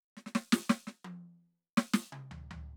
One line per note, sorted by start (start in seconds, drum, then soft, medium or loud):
0.17 snare soft
0.26 snare soft
0.35 snare medium
0.52 snare loud
0.69 snare loud
0.87 snare soft
1.04 high tom medium
1.77 snare loud
1.94 snare loud
2.12 mid tom medium
2.31 floor tom medium
2.51 floor tom medium